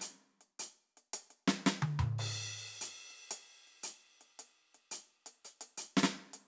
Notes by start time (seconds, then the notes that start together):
0.01 closed hi-hat
0.41 closed hi-hat
0.59 closed hi-hat
0.97 closed hi-hat
1.13 closed hi-hat
1.30 closed hi-hat
1.47 snare
1.66 snare
1.82 high tom
1.99 mid tom
2.18 crash
2.81 closed hi-hat
3.10 closed hi-hat
3.31 closed hi-hat
3.67 closed hi-hat
3.83 closed hi-hat
4.21 closed hi-hat
4.39 closed hi-hat
4.74 closed hi-hat
4.91 closed hi-hat
5.08 closed hi-hat
5.26 closed hi-hat
5.45 closed hi-hat
5.61 closed hi-hat
5.77 closed hi-hat
5.97 snare
6.03 snare
6.33 closed hi-hat